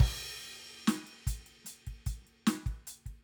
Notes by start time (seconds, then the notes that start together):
0.01 kick, crash
0.40 hi-hat pedal
0.88 closed hi-hat, snare
1.07 closed hi-hat
1.27 closed hi-hat, kick
1.47 closed hi-hat
1.65 closed hi-hat, snare
1.87 kick, closed hi-hat
2.07 closed hi-hat, kick
2.23 snare
2.27 closed hi-hat
2.47 closed hi-hat, snare
2.67 kick, closed hi-hat
2.88 closed hi-hat
3.06 kick, closed hi-hat